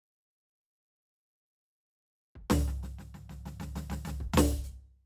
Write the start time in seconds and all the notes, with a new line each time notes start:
2.35 kick
2.50 snare, floor tom
2.67 snare, floor tom
2.83 snare, floor tom
2.98 snare, floor tom
3.14 snare, floor tom
3.29 snare, floor tom
3.45 snare, floor tom
3.60 snare, floor tom
3.75 snare, floor tom
3.90 snare, floor tom
4.05 snare, floor tom, hi-hat pedal
4.20 kick
4.33 floor tom, hi-hat pedal
4.37 snare
4.51 kick
4.64 hi-hat pedal